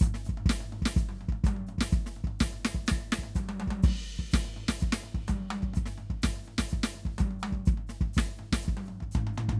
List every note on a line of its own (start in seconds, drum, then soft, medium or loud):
0.01 kick loud
0.01 floor tom loud
0.01 hi-hat pedal medium
0.14 snare medium
0.24 floor tom medium
0.24 hi-hat pedal medium
0.29 kick medium
0.37 floor tom medium
0.46 kick loud
0.46 snare loud
0.46 hi-hat pedal medium
0.60 floor tom medium
0.71 floor tom medium
0.71 hi-hat pedal soft
0.82 kick medium
0.82 snare loud
0.96 kick loud
0.96 floor tom medium
0.96 hi-hat pedal medium
1.09 high tom medium
1.18 floor tom medium
1.18 hi-hat pedal soft
1.28 kick medium
1.28 floor tom medium
1.44 kick loud
1.44 hi-hat pedal medium
1.44 high tom loud
1.56 floor tom medium
1.67 floor tom medium
1.67 hi-hat pedal soft
1.78 kick medium
1.78 snare loud
1.91 kick loud
1.91 hi-hat pedal medium
2.06 snare medium
2.13 floor tom medium
2.13 hi-hat pedal soft
2.24 kick medium
2.24 floor tom medium
2.39 kick medium
2.39 snare loud
2.39 hi-hat pedal medium
2.53 floor tom medium
2.60 hi-hat pedal soft
2.65 snare loud
2.75 kick medium
2.75 floor tom soft
2.86 snare loud
2.86 hi-hat pedal medium
2.92 kick medium
3.00 floor tom medium
3.08 snare loud
3.08 hi-hat pedal soft
3.19 kick medium
3.23 floor tom medium
3.35 kick medium
3.35 hi-hat pedal medium
3.35 high tom loud
3.49 high tom loud
3.55 hi-hat pedal soft
3.60 high tom loud
3.67 kick medium
3.67 high tom loud
3.82 kick loud
3.82 hi-hat pedal medium
3.82 crash medium
4.04 hi-hat pedal soft
4.19 kick medium
4.31 kick loud
4.31 snare loud
4.31 hi-hat pedal medium
4.45 floor tom medium
4.56 floor tom medium
4.68 kick medium
4.68 snare loud
4.79 kick medium
4.79 floor tom medium
4.79 hi-hat pedal medium
4.92 snare loud
5.03 floor tom medium
5.14 kick medium
5.14 floor tom medium
5.28 kick medium
5.28 hi-hat pedal medium
5.28 high tom loud
5.40 floor tom soft
5.48 hi-hat pedal soft
5.48 high tom loud
5.62 kick medium
5.62 floor tom medium
5.73 kick medium
5.73 floor tom medium
5.73 hi-hat pedal medium
5.86 snare medium
5.96 floor tom medium
5.96 hi-hat pedal soft
6.10 kick medium
6.10 floor tom medium
6.22 kick medium
6.22 snare loud
6.22 hi-hat pedal medium
6.36 floor tom soft
6.44 floor tom medium
6.44 hi-hat pedal soft
6.58 kick medium
6.58 snare loud
6.69 floor tom medium
6.69 hi-hat pedal medium
6.73 kick medium
6.83 snare loud
6.90 hi-hat pedal soft
6.94 floor tom soft
7.05 kick medium
7.05 floor tom medium
7.18 kick medium
7.18 hi-hat pedal medium
7.18 high tom loud
7.30 floor tom medium
7.39 hi-hat pedal soft
7.39 high tom loud
7.52 kick medium
7.52 floor tom medium
7.65 kick loud
7.65 hi-hat pedal medium
7.77 floor tom medium
7.87 snare medium
7.87 hi-hat pedal soft
8.01 kick medium
8.01 floor tom medium
8.13 kick medium
8.13 hi-hat pedal medium
8.18 snare loud
8.26 floor tom soft
8.36 floor tom medium
8.36 hi-hat pedal soft
8.52 kick medium
8.52 snare loud
8.62 floor tom medium
8.62 hi-hat pedal medium
8.68 kick medium
8.77 high tom loud
8.85 floor tom medium
8.85 hi-hat pedal soft
9.00 kick medium
9.00 floor tom medium
9.11 kick medium
9.11 floor tom loud
9.11 hi-hat pedal medium
9.27 floor tom loud
9.33 hi-hat pedal soft
9.38 floor tom loud
9.48 kick medium
9.48 floor tom loud